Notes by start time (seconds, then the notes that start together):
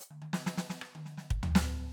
0.00 hi-hat pedal
0.11 high tom
0.22 high tom
0.33 snare
0.47 snare
0.58 snare
0.70 snare
0.82 cross-stick
0.95 high tom
1.06 snare
1.18 snare
1.31 kick
1.43 floor tom
1.55 snare